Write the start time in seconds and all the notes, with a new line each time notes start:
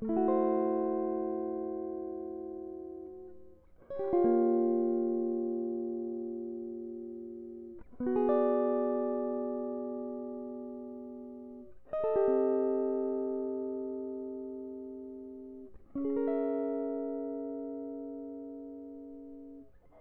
0.00 A3
0.09 E4
0.17 F#4
0.28 C5
3.90 C#5
3.98 G4
4.13 F4
4.22 A#3
8.00 B3
8.08 F#4
8.16 G#4
8.29 D5
11.94 D#5
12.04 A4
12.16 G4
12.27 C4
15.95 C#4
16.17 A#4
16.28 E5